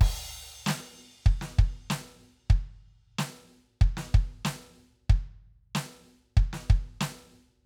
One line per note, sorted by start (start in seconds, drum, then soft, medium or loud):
0.01 kick loud
0.01 crash loud
0.66 snare loud
0.69 snare loud
1.26 kick loud
1.41 snare medium
1.59 kick loud
1.90 snare loud
2.50 kick loud
3.19 snare loud
3.81 kick loud
3.97 snare loud
4.14 kick loud
4.45 snare loud
5.10 kick loud
5.75 snare loud
6.37 kick loud
6.53 snare medium
6.70 kick loud
7.01 snare loud